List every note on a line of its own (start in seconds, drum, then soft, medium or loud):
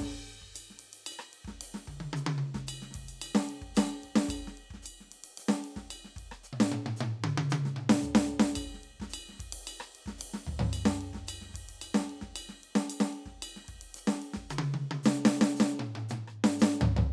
0.01 kick soft
0.01 hi-hat pedal medium
0.01 crash medium
0.12 kick soft
0.42 kick soft
0.55 hi-hat pedal medium
0.55 ride bell medium
0.70 snare soft
0.78 cross-stick soft
0.78 ride medium
0.93 ride medium
1.07 ride bell loud
1.11 hi-hat pedal medium
1.19 cross-stick medium
1.33 ride medium
1.45 kick soft
1.45 snare soft
1.50 kick soft
1.61 hi-hat pedal medium
1.61 ride loud
1.74 snare medium
1.88 kick soft
1.88 high tom medium
2.01 high tom medium
2.13 hi-hat pedal medium
2.13 high tom loud
2.27 high tom loud
2.38 high tom medium
2.54 kick soft
2.54 snare medium
2.67 hi-hat pedal medium
2.67 ride bell loud
2.82 snare soft
2.91 snare soft
2.91 ride medium
2.95 kick soft
2.95 snare soft
3.01 kick soft
3.01 snare soft
3.08 snare soft
3.08 ride bell medium
3.22 hi-hat pedal medium
3.22 ride bell loud
3.35 snare loud
3.49 ride medium
3.62 kick soft
3.68 kick soft
3.75 snare loud
3.75 hi-hat pedal medium
3.75 ride bell loud
3.86 snare soft
4.04 kick soft
4.04 ride soft
4.16 snare loud
4.24 snare soft
4.28 kick medium
4.28 hi-hat pedal medium
4.28 ride bell loud
4.35 kick soft
4.40 kick soft
4.48 snare soft
4.58 ride soft
4.71 kick soft
4.71 snare soft
4.83 hi-hat pedal medium
4.83 ride bell medium
5.01 snare soft
5.07 snare soft
5.11 snare soft
5.11 ride medium
5.24 ride medium
5.38 hi-hat pedal medium
5.38 ride medium
5.49 snare loud
5.64 ride medium
5.76 kick soft
5.76 snare soft
5.81 kick soft
5.90 hi-hat pedal medium
5.90 ride bell loud
6.05 snare soft
6.16 kick soft
6.16 ride medium
6.32 cross-stick medium
6.44 hi-hat pedal medium
6.53 mid tom medium
6.60 snare loud
6.72 mid tom loud
6.86 mid tom loud
6.97 hi-hat pedal medium
7.01 mid tom loud
7.24 high tom loud
7.29 cross-stick soft
7.38 high tom loud
7.50 hi-hat pedal medium
7.50 high tom loud
7.66 snare soft
7.77 mid tom medium
7.90 snare loud
8.03 floor tom medium
8.03 hi-hat pedal medium
8.15 snare loud
8.32 kick soft
8.40 snare loud
8.55 kick soft
8.55 hi-hat pedal medium
8.55 ride bell loud
8.69 kick soft
8.74 snare soft
8.84 ride soft
9.00 kick soft
9.00 snare medium
9.06 kick soft
9.10 hi-hat pedal medium
9.14 ride bell loud
9.29 snare soft
9.33 snare soft
9.36 snare soft
9.39 kick soft
9.39 snare soft
9.39 ride medium
9.46 kick soft
9.53 ride loud
9.67 hi-hat pedal medium
9.67 ride bell loud
9.80 cross-stick medium
9.95 ride medium
10.06 kick soft
10.06 snare medium
10.19 hi-hat pedal medium
10.19 ride loud
10.34 snare medium
10.47 kick soft
10.47 floor tom medium
10.60 floor tom loud
10.73 hi-hat pedal medium
10.73 ride bell loud
10.86 snare loud
11.01 ride soft
11.13 kick soft
11.13 snare soft
11.19 kick soft
11.28 hi-hat pedal medium
11.28 ride bell loud
11.42 snare soft
11.50 snare soft
11.54 kick soft
11.54 ride medium
11.69 ride medium
11.82 hi-hat pedal medium
11.82 ride bell loud
11.95 snare loud
12.01 snare soft
12.10 ride soft
12.22 kick soft
12.22 snare soft
12.36 hi-hat pedal medium
12.36 ride bell loud
12.49 snare soft
12.64 ride medium
12.76 snare loud
12.90 hi-hat pedal medium
12.90 ride bell loud
13.01 snare medium
13.13 ride soft
13.26 kick soft
13.26 snare soft
13.42 hi-hat pedal medium
13.42 ride bell loud
13.56 snare soft
13.65 kick soft
13.65 cross-stick soft
13.65 ride medium
13.75 snare soft
13.78 snare soft
13.78 ride medium
13.95 hi-hat pedal medium
13.95 ride medium
14.08 snare medium
14.14 snare soft
14.22 ride medium
14.34 kick soft
14.34 snare medium
14.50 hi-hat pedal medium
14.50 high tom medium
14.59 high tom loud
14.74 high tom loud
14.91 high tom loud
15.04 snare loud
15.04 hi-hat pedal medium
15.25 snare loud
15.41 snare loud
15.56 hi-hat pedal medium
15.60 snare loud
15.80 mid tom loud
15.96 mid tom medium
16.09 hi-hat pedal medium
16.09 mid tom loud
16.28 cross-stick medium
16.44 snare loud
16.59 snare loud
16.59 hi-hat pedal medium
16.81 floor tom loud
16.97 floor tom loud